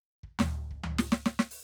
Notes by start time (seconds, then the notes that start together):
0.23 kick
0.39 snare, floor tom
0.71 kick
0.84 floor tom
0.98 snare
1.12 snare
1.26 snare
1.39 snare
1.51 open hi-hat